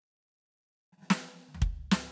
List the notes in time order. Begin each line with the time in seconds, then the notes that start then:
0.92 snare
0.98 snare
1.00 snare
1.02 snare
1.10 snare
1.49 high tom
1.55 floor tom
1.62 kick
1.92 snare